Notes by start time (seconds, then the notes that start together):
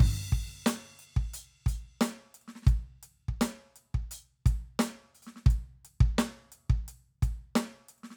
0.01 kick, crash
0.33 kick
0.43 kick
0.67 closed hi-hat, snare
1.00 open hi-hat
1.17 kick
1.34 closed hi-hat
1.67 closed hi-hat, kick
2.02 closed hi-hat, snare
2.35 closed hi-hat
2.42 closed hi-hat
2.49 snare
2.56 snare
2.63 snare
2.67 kick, closed hi-hat
3.04 closed hi-hat
3.29 kick
3.42 closed hi-hat, snare
3.77 closed hi-hat
3.95 kick
4.12 closed hi-hat
4.47 kick, closed hi-hat
4.80 closed hi-hat, snare
5.15 closed hi-hat
5.23 closed hi-hat
5.27 snare
5.37 snare
5.47 kick, snare
5.51 closed hi-hat
5.86 closed hi-hat
6.01 kick
6.19 snare, closed hi-hat
6.53 closed hi-hat
6.70 kick
6.89 closed hi-hat
7.23 kick, closed hi-hat
7.56 snare, closed hi-hat
7.89 closed hi-hat
7.99 closed hi-hat
8.04 snare
8.11 snare